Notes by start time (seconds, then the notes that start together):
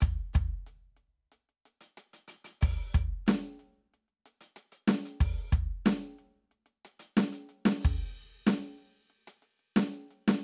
0.01 closed hi-hat, kick
0.33 kick, closed hi-hat, hi-hat pedal
0.67 closed hi-hat
0.97 closed hi-hat
1.32 closed hi-hat
1.49 closed hi-hat
1.65 closed hi-hat
1.81 closed hi-hat
1.97 closed hi-hat
2.13 closed hi-hat
2.28 closed hi-hat
2.44 closed hi-hat
2.61 open hi-hat, kick
2.94 kick, hi-hat pedal, open hi-hat
3.26 closed hi-hat, snare
3.59 closed hi-hat
3.94 closed hi-hat
4.08 closed hi-hat
4.26 closed hi-hat
4.41 closed hi-hat
4.56 closed hi-hat
4.72 closed hi-hat
4.88 snare
5.05 closed hi-hat
5.20 kick, open hi-hat
5.52 kick, closed hi-hat, hi-hat pedal
5.85 closed hi-hat, snare
6.19 closed hi-hat
6.51 closed hi-hat
6.66 closed hi-hat
6.85 closed hi-hat
6.99 closed hi-hat
7.17 snare
7.32 closed hi-hat
7.49 closed hi-hat
7.65 snare
7.81 kick, crash
8.46 closed hi-hat, snare
8.78 closed hi-hat
9.10 closed hi-hat
9.27 closed hi-hat
9.42 closed hi-hat
9.59 closed hi-hat
9.76 snare
9.93 closed hi-hat
10.11 closed hi-hat
10.28 snare